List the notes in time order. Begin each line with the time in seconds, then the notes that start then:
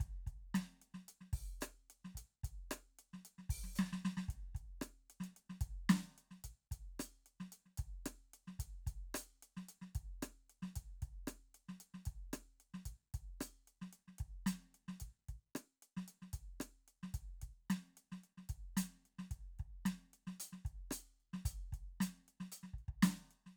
0.01 kick, closed hi-hat
0.27 kick, closed hi-hat
0.55 snare, closed hi-hat
0.83 closed hi-hat
0.95 snare
1.09 closed hi-hat
1.22 snare
1.34 kick, open hi-hat
1.62 cross-stick, closed hi-hat, hi-hat pedal
1.91 closed hi-hat
2.05 snare
2.16 kick, closed hi-hat
2.44 kick, closed hi-hat
2.72 cross-stick, closed hi-hat
3.00 closed hi-hat
3.14 snare
3.26 closed hi-hat
3.39 snare
3.50 kick, open hi-hat
3.65 snare
3.76 snare, hi-hat pedal
3.93 snare
4.06 snare
4.18 snare
4.29 kick, closed hi-hat
4.56 kick, closed hi-hat
4.82 cross-stick, closed hi-hat
5.11 closed hi-hat
5.21 snare, closed hi-hat
5.37 closed hi-hat
5.50 snare
5.62 kick, closed hi-hat
5.90 snare, closed hi-hat
5.97 snare
6.19 closed hi-hat
6.32 snare
6.45 kick, closed hi-hat
6.72 kick, closed hi-hat
7.00 closed hi-hat, cross-stick
7.27 closed hi-hat
7.41 snare
7.53 closed hi-hat
7.66 snare
7.78 kick, closed hi-hat
8.07 cross-stick, closed hi-hat
8.34 closed hi-hat
8.48 snare
8.60 kick, closed hi-hat
8.87 kick, closed hi-hat
9.15 closed hi-hat, cross-stick
9.43 closed hi-hat
9.58 snare
9.70 closed hi-hat
9.82 snare
9.96 kick, closed hi-hat
10.23 cross-stick, closed hi-hat
10.51 closed hi-hat
10.63 snare
10.77 kick, closed hi-hat
11.03 kick, closed hi-hat
11.28 cross-stick, closed hi-hat
11.55 closed hi-hat
11.69 snare
11.81 closed hi-hat
11.95 snare
12.06 kick, closed hi-hat
12.34 cross-stick, closed hi-hat
12.61 closed hi-hat
12.75 snare
12.86 kick, closed hi-hat
13.15 kick, closed hi-hat
13.42 closed hi-hat, cross-stick
13.68 closed hi-hat
13.82 snare
13.94 closed hi-hat
14.09 snare
14.19 kick, closed hi-hat
14.47 closed hi-hat, snare
14.75 closed hi-hat
14.89 snare
15.01 kick, closed hi-hat
15.29 kick, closed hi-hat
15.56 cross-stick, closed hi-hat
15.83 closed hi-hat
15.98 snare
16.09 closed hi-hat
16.23 snare
16.34 kick, closed hi-hat
16.61 cross-stick, closed hi-hat
16.89 closed hi-hat
17.04 snare
17.15 kick, closed hi-hat
17.43 kick, closed hi-hat
17.71 snare, closed hi-hat
17.98 closed hi-hat
18.13 snare
18.25 closed hi-hat
18.38 snare
18.50 kick, closed hi-hat
18.78 closed hi-hat, snare
19.06 closed hi-hat
19.19 snare
19.32 kick, closed hi-hat
19.60 kick, closed hi-hat
19.86 snare, closed hi-hat
20.14 closed hi-hat
20.28 snare
20.41 closed hi-hat
20.53 snare
20.66 kick, closed hi-hat
20.92 closed hi-hat, cross-stick
21.21 closed hi-hat
21.34 snare
21.46 closed hi-hat, kick
21.73 kick, closed hi-hat
22.01 closed hi-hat, snare
22.29 closed hi-hat
22.41 snare
22.53 closed hi-hat
22.64 snare
22.74 kick
22.79 closed hi-hat
22.89 kick
23.03 closed hi-hat, snare
23.32 closed hi-hat
23.47 snare